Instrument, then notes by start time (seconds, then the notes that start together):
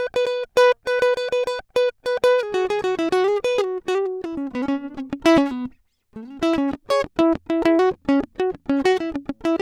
acoustic guitar
0.00 B4
0.15 B4
0.27 B4
0.58 B4
0.89 B4
1.04 B4
1.19 B4
1.34 B4
1.49 B4
1.78 B4
2.08 B4
2.25 B4
2.41 G#4
2.56 F#4
2.72 G#4
2.86 F#4
3.01 E4
3.14 F#4
3.26 G#4
3.46 B4
3.60 F#4
3.90 G4
4.26 E4
4.40 C#4
4.57 B3
4.71 C#4
5.27 E4
5.39 C#4
5.53 B3
6.18 A3
6.44 E4
6.60 C#4
6.92 G#4 C#5
7.21 E4
7.51 E4
7.67 E4 G#4
7.81 F#4
8.10 C#4
8.41 F#4
8.71 C#4
8.87 F#4
8.98 E4
9.47 E4